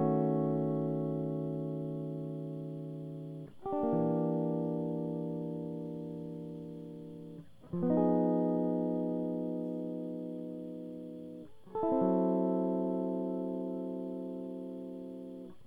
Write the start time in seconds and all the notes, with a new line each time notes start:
0.01 D#3 A3 C#4 F#4
3.66 G4
3.73 D4
3.82 A#3
3.95 E3
7.74 F3
7.81 B3
7.89 D#4
7.98 G#4
11.75 A4
11.83 E4
11.91 C4
12.03 F#3